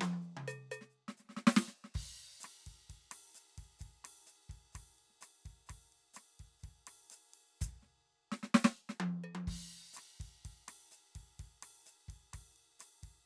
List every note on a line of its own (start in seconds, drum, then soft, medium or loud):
0.01 hi-hat pedal medium
0.01 high tom loud
0.13 high tom soft
0.22 hi-hat pedal soft
0.37 mid tom medium
0.48 hi-hat pedal medium
0.48 percussion loud
0.71 hi-hat pedal medium
0.71 percussion loud
0.81 snare soft
0.90 hi-hat pedal soft
1.08 snare soft
1.17 snare soft
1.17 hi-hat pedal soft
1.25 snare soft
1.29 snare soft
1.37 snare soft
1.47 snare loud
1.47 hi-hat pedal medium
1.57 snare loud
1.68 snare soft
1.84 snare soft
1.94 kick soft
1.94 crash medium
2.02 kick soft
2.40 snare soft
2.40 hi-hat pedal medium
2.40 ride medium
2.44 cross-stick soft
2.67 kick soft
2.67 ride soft
2.90 kick soft
2.90 ride soft
3.11 cross-stick soft
3.11 snare soft
3.11 ride medium
3.35 hi-hat pedal medium
3.35 ride soft
3.58 kick soft
3.58 ride soft
3.79 kick soft
3.79 hi-hat pedal soft
3.79 ride soft
3.86 kick soft
4.04 cross-stick soft
4.04 snare soft
4.04 ride medium
4.26 hi-hat pedal medium
4.26 ride soft
4.50 kick soft
4.50 ride soft
4.72 kick soft
4.72 cross-stick soft
4.72 snare soft
4.72 hi-hat pedal soft
4.72 ride medium
4.99 ride soft
5.10 snare soft
5.21 cross-stick soft
5.21 hi-hat pedal medium
5.21 ride medium
5.45 kick soft
5.45 ride soft
5.67 kick soft
5.67 cross-stick soft
5.67 hi-hat pedal soft
5.67 ride medium
5.93 ride soft
6.14 cross-stick soft
6.14 snare soft
6.14 hi-hat pedal medium
6.14 ride medium
6.40 kick soft
6.40 ride soft
6.59 hi-hat pedal soft
6.64 kick soft
6.64 ride soft
6.68 kick soft
6.87 cross-stick soft
6.87 ride medium
7.10 hi-hat pedal medium
7.10 ride medium
7.34 ride soft
7.61 kick soft
7.61 hi-hat pedal loud
7.68 kick soft
7.82 snare soft
8.32 snare medium
8.43 snare soft
8.55 snare loud
8.89 snare soft
9.00 high tom loud
9.24 percussion medium
9.35 high tom medium
9.47 kick soft
9.47 crash medium
9.53 kick soft
9.93 cross-stick soft
9.93 hi-hat pedal medium
9.97 cross-stick soft
9.97 ride medium
10.20 kick soft
10.20 ride soft
10.45 kick soft
10.45 ride medium
10.68 cross-stick soft
10.68 snare soft
10.68 ride medium
10.91 hi-hat pedal medium
10.91 ride soft
11.15 kick soft
11.15 ride soft
11.39 kick soft
11.39 hi-hat pedal soft
11.39 ride soft
11.63 cross-stick soft
11.63 ride medium
11.86 hi-hat pedal medium
11.86 ride soft
12.08 kick soft
12.08 ride soft
12.33 kick soft
12.33 cross-stick soft
12.33 snare soft
12.33 ride medium
12.56 ride soft
12.80 cross-stick soft
12.80 hi-hat pedal medium
12.80 ride medium
13.03 kick soft
13.03 ride soft